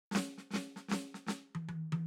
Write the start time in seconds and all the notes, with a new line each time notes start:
0.11 snare
0.15 snare
0.38 snare
0.51 snare
0.54 snare
0.76 snare
0.88 snare
0.91 snare
1.14 snare
1.27 snare
1.28 snare
1.55 high tom
1.69 high tom
1.92 high tom